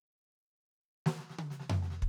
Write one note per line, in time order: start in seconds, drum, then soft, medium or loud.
1.06 snare loud
1.18 snare soft
1.30 snare soft
1.38 high tom loud
1.50 snare soft
1.50 hi-hat pedal soft
1.60 snare soft
1.69 floor tom loud
1.82 snare soft
1.90 snare soft
2.02 kick medium